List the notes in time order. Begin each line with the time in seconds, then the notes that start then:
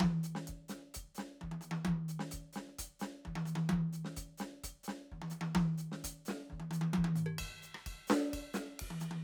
0.01 kick, high tom
0.24 hi-hat pedal
0.36 snare
0.48 kick, closed hi-hat
0.69 snare, hi-hat pedal
0.80 snare
0.95 closed hi-hat, kick
1.15 snare, hi-hat pedal
1.42 kick, high tom
1.52 high tom
1.62 hi-hat pedal, high tom
1.72 high tom
1.86 kick, high tom
1.93 kick
2.09 hi-hat pedal
2.20 snare
2.32 closed hi-hat, kick
2.53 snare, hi-hat pedal
2.68 snare
2.79 closed hi-hat, kick
3.00 snare, hi-hat pedal
3.26 kick, high tom
3.36 high tom
3.46 hi-hat pedal, high tom
3.56 high tom
3.70 kick, high tom
3.93 hi-hat pedal
4.05 snare
4.17 closed hi-hat, kick
4.38 snare, hi-hat pedal
4.64 closed hi-hat, kick
4.84 hi-hat pedal
4.89 snare
5.12 kick, high tom
5.22 high tom
5.31 hi-hat pedal, high tom
5.42 high tom
5.56 kick, high tom
5.78 hi-hat pedal
5.92 snare
6.03 closed hi-hat, kick, snare
6.26 snare, hi-hat pedal
6.50 kick, high tom
6.72 hi-hat pedal, high tom
6.82 high tom
6.94 high tom
6.99 kick
7.05 high tom
7.16 hi-hat pedal, mid tom
7.27 percussion
7.39 kick, ride bell
7.59 hi-hat pedal, ride
7.75 cross-stick
7.87 kick, ride bell
8.08 snare, hi-hat pedal
8.34 kick, ride bell
8.54 snare, hi-hat pedal
8.80 kick, ride
8.91 high tom
9.01 hi-hat pedal, high tom
9.12 high tom